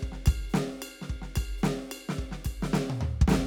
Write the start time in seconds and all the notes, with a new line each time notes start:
0.03 kick
0.12 snare
0.26 kick, ride bell
0.50 hi-hat pedal
0.54 snare
0.82 ride bell
1.02 snare
1.10 kick
1.22 snare
1.36 kick, ride bell
1.58 hi-hat pedal
1.64 snare
1.92 ride bell
2.09 snare
2.19 kick
2.32 snare
2.45 kick, ride bell
2.63 snare, hi-hat pedal
2.74 snare
2.90 high tom
3.01 floor tom
3.22 kick
3.28 snare
3.32 snare